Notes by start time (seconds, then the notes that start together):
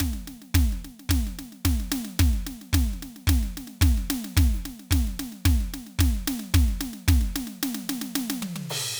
0.00 kick, snare
0.13 snare
0.27 snare
0.42 snare
0.54 kick, snare
0.72 snare
0.84 snare
0.99 snare
1.09 kick, snare
1.27 snare
1.39 snare
1.52 snare
1.65 kick, snare
1.80 snare
1.92 snare
2.04 snare
2.19 kick, snare
2.33 snare
2.46 snare
2.61 snare
2.73 kick, snare
2.93 snare
3.02 snare
3.16 snare
3.27 kick, snare
3.43 snare
3.57 snare
3.67 snare
3.81 kick, snare
3.97 snare
4.10 snare
4.24 snare
4.37 kick, snare
4.54 snare
4.65 snare
4.79 snare
4.91 kick, snare
5.07 snare
5.19 snare
5.32 snare
5.45 kick, snare
5.60 snare
5.74 snare
5.86 snare
5.99 kick, snare
6.14 snare
6.27 snare
6.39 snare
6.54 kick, snare
6.68 snare
6.81 snare
6.93 snare
7.07 kick, snare, closed hi-hat
7.21 snare
7.34 snare, closed hi-hat
7.47 snare
7.63 snare
7.74 snare
7.89 snare
8.01 snare
8.15 snare
8.30 snare
8.42 high tom
8.56 high tom
8.70 crash